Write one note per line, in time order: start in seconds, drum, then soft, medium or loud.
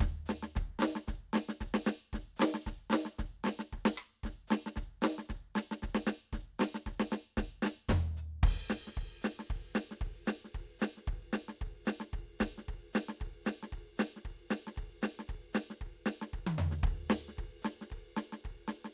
0.01 kick medium
0.01 snare medium
0.27 snare medium
0.27 hi-hat pedal medium
0.43 snare medium
0.56 kick medium
0.56 snare soft
0.80 snare medium
0.80 hi-hat pedal medium
0.83 snare loud
0.96 snare medium
1.08 kick medium
1.08 snare soft
1.34 snare medium
1.34 hi-hat pedal medium
1.36 snare medium
1.49 snare medium
1.61 kick soft
1.61 snare soft
1.75 snare medium
1.85 snare loud
1.85 hi-hat pedal medium
2.13 kick soft
2.13 snare medium
2.37 snare medium
2.37 hi-hat pedal medium
2.42 snare loud
2.55 snare medium
2.67 kick soft
2.67 snare soft
2.91 snare medium
2.91 hi-hat pedal medium
2.94 snare loud
3.06 snare soft
3.19 kick medium
3.19 snare soft
3.44 snare medium
3.44 hi-hat pedal medium
3.47 snare medium
3.60 snare medium
3.73 kick soft
3.73 snare soft
3.86 snare loud
3.96 cross-stick medium
3.96 hi-hat pedal medium
4.24 kick soft
4.24 snare soft
4.48 snare medium
4.48 hi-hat pedal medium
4.53 snare medium
4.67 snare medium
4.77 kick medium
4.77 snare soft
5.02 snare medium
5.02 hi-hat pedal medium
5.04 snare loud
5.19 snare soft
5.30 kick soft
5.30 snare soft
5.55 snare medium
5.55 hi-hat pedal medium
5.58 snare medium
5.72 snare medium
5.83 kick soft
5.83 snare soft
5.95 snare medium
6.07 snare medium
6.07 hi-hat pedal medium
6.33 kick medium
6.33 snare soft
6.59 snare medium
6.59 hi-hat pedal medium
6.62 snare loud
6.75 snare medium
6.87 kick soft
6.87 snare soft
7.00 snare medium
7.11 snare medium
7.11 hi-hat pedal medium
7.38 kick medium
7.38 snare medium
7.63 snare medium
7.63 hi-hat pedal medium
7.66 snare medium
7.89 kick medium
7.89 snare medium
7.89 floor tom loud
8.17 hi-hat pedal medium
8.44 kick loud
8.44 crash medium
8.70 snare medium
8.70 hi-hat pedal medium
8.70 ride medium
8.88 snare soft
8.97 kick medium
8.97 ride soft
9.22 snare medium
9.22 hi-hat pedal medium
9.22 ride soft
9.40 snare soft
9.51 kick medium
9.51 ride soft
9.75 snare medium
9.75 hi-hat pedal medium
9.75 ride medium
9.92 snare soft
10.02 kick medium
10.02 ride soft
10.27 snare medium
10.27 hi-hat pedal medium
10.27 ride medium
10.45 snare soft
10.55 kick soft
10.55 ride soft
10.80 snare medium
10.80 hi-hat pedal medium
10.80 ride soft
10.98 snare soft
11.08 kick medium
11.08 ride soft
11.33 snare medium
11.33 hi-hat pedal medium
11.33 ride soft
11.49 snare soft
11.62 kick medium
11.62 ride soft
11.86 snare medium
11.86 hi-hat pedal medium
11.86 ride soft
12.01 snare soft
12.14 kick medium
12.14 ride soft
12.40 kick soft
12.40 snare medium
12.40 hi-hat pedal medium
12.40 ride medium
12.58 snare soft
12.69 kick soft
12.69 ride soft
12.94 snare medium
12.94 hi-hat pedal medium
12.94 ride medium
13.09 snare soft
13.21 kick medium
13.21 ride soft
13.46 snare medium
13.46 hi-hat pedal medium
13.46 ride medium
13.63 snare soft
13.73 kick soft
13.73 ride soft
13.98 snare medium
13.98 hi-hat pedal medium
13.98 ride medium
14.17 snare soft
14.26 kick soft
14.26 ride soft
14.50 snare medium
14.50 hi-hat pedal medium
14.50 ride medium
14.68 snare soft
14.77 kick soft
14.77 ride soft
15.02 snare medium
15.02 hi-hat pedal medium
15.02 ride medium
15.20 snare soft
15.29 kick soft
15.29 ride soft
15.54 snare medium
15.54 hi-hat pedal medium
15.54 ride soft
15.71 snare soft
15.82 kick soft
15.82 ride soft
16.07 snare medium
16.07 hi-hat pedal medium
16.07 ride medium
16.22 snare medium
16.34 kick soft
16.34 ride soft
16.47 high tom loud
16.59 floor tom loud
16.59 hi-hat pedal medium
16.72 snare soft
16.84 kick loud
16.84 ride medium
17.09 snare loud
17.09 hi-hat pedal medium
17.09 ride medium
17.29 snare soft
17.38 kick soft
17.38 ride soft
17.62 snare medium
17.62 hi-hat pedal medium
17.62 ride medium
17.82 snare soft
17.91 kick soft
17.91 ride medium
18.17 snare medium
18.17 hi-hat pedal medium
18.17 ride medium
18.33 snare soft
18.45 kick soft
18.45 ride soft
18.69 snare medium
18.69 hi-hat pedal medium
18.69 ride soft
18.85 snare soft